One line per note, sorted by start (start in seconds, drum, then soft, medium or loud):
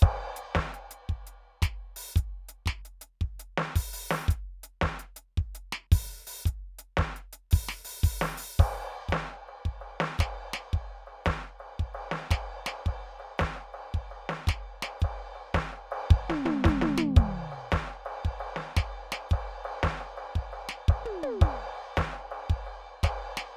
0.01 kick loud
0.01 hi-hat pedal medium
0.01 crash loud
0.37 closed hi-hat loud
0.56 kick medium
0.56 snare loud
0.75 closed hi-hat medium
0.91 closed hi-hat loud
1.10 kick medium
1.27 closed hi-hat medium
1.63 open hi-hat loud
1.63 kick medium
1.63 snare loud
1.97 open hi-hat loud
2.13 kick medium
2.13 hi-hat pedal medium
2.18 closed hi-hat loud
2.49 closed hi-hat loud
2.67 kick medium
2.67 snare loud
2.86 closed hi-hat medium
3.02 closed hi-hat loud
3.22 kick medium
3.40 closed hi-hat loud
3.58 snare loud
3.76 open hi-hat loud
3.76 kick medium
3.94 open hi-hat loud
4.11 snare loud
4.25 hi-hat pedal soft
4.29 closed hi-hat loud
4.29 kick medium
4.64 closed hi-hat loud
4.82 kick medium
4.82 snare loud
5.00 closed hi-hat loud
5.17 closed hi-hat loud
5.38 kick medium
5.55 closed hi-hat loud
5.73 snare loud
5.92 open hi-hat loud
5.92 kick loud
6.28 open hi-hat loud
6.43 closed hi-hat loud
6.43 kick medium
6.43 hi-hat pedal medium
6.79 closed hi-hat loud
6.98 kick medium
6.98 snare loud
7.17 closed hi-hat medium
7.33 closed hi-hat loud
7.52 open hi-hat loud
7.52 kick loud
7.69 snare loud
7.85 open hi-hat loud
8.04 open hi-hat loud
8.04 kick loud
8.22 snare loud
8.38 open hi-hat loud
8.60 kick loud
8.60 crash loud
8.93 crash soft
9.09 kick medium
9.09 snare loud
9.09 hi-hat pedal medium
9.30 crash soft
9.49 crash medium
9.66 kick medium
9.81 crash medium
10.01 snare loud
10.19 kick medium
10.19 snare loud
10.19 hi-hat pedal medium
10.19 crash medium
10.54 snare loud
10.54 crash medium
10.74 kick medium
10.74 crash soft
11.07 crash medium
11.25 kick medium
11.25 snare loud
11.25 hi-hat pedal medium
11.43 crash soft
11.60 crash medium
11.80 kick medium
11.95 crash medium
12.12 snare loud
12.31 kick medium
12.31 snare loud
12.31 hi-hat pedal medium
12.31 crash medium
12.67 snare loud
12.67 crash medium
12.87 kick medium
12.87 crash medium
13.20 crash medium
13.39 kick medium
13.39 snare loud
13.39 hi-hat pedal medium
13.56 crash medium
13.74 crash medium
13.95 kick medium
14.11 crash medium
14.30 snare loud
14.48 kick medium
14.48 snare loud
14.48 crash medium
14.83 snare loud
14.83 crash medium
15.00 kick medium
15.00 hi-hat pedal medium
15.04 crash medium
15.35 crash medium
15.55 kick medium
15.55 snare loud
15.73 crash medium
15.92 crash loud
16.11 kick loud
16.29 snare medium
16.29 floor tom loud
16.45 snare medium
16.45 floor tom loud
16.64 kick medium
16.64 snare loud
16.64 floor tom loud
16.64 hi-hat pedal medium
16.82 snare loud
16.82 floor tom loud
16.98 snare loud
16.98 floor tom loud
17.16 kick loud
17.16 hi-hat pedal medium
17.16 crash loud
17.52 crash medium
17.72 kick medium
17.72 snare loud
17.72 hi-hat pedal medium
17.87 crash medium
18.06 crash loud
18.25 kick medium
18.40 crash medium
18.57 snare medium
18.77 kick medium
18.77 snare loud
18.77 crash medium
19.13 snare loud
19.13 crash medium
19.30 kick medium
19.30 hi-hat pedal medium
19.30 crash medium
19.65 crash loud
19.83 kick medium
19.83 snare loud
19.83 hi-hat pedal soft
20.01 crash medium
20.18 crash medium
20.35 kick medium
20.35 hi-hat pedal soft
20.53 crash medium
20.69 snare loud
20.89 kick loud
20.89 crash medium
21.06 mid tom loud
21.24 high tom loud
21.42 kick loud
21.42 hi-hat pedal medium
21.42 crash loud
21.76 crash medium
21.97 kick medium
21.97 snare loud
21.97 hi-hat pedal medium
22.13 crash medium
22.32 crash medium
22.50 kick medium
22.66 crash medium
23.04 kick medium
23.04 snare loud
23.04 crash loud
23.37 snare loud
23.37 crash medium